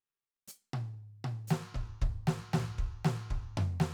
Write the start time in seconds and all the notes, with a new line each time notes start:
0.47 hi-hat pedal
0.73 mid tom
1.24 mid tom
1.47 snare, hi-hat pedal, crash
1.74 kick, mid tom
2.01 kick, mid tom
2.27 snare, mid tom
2.53 snare, mid tom, floor tom
2.58 snare
2.78 kick, mid tom
3.04 snare, mid tom
3.30 kick, mid tom
3.57 floor tom
3.80 snare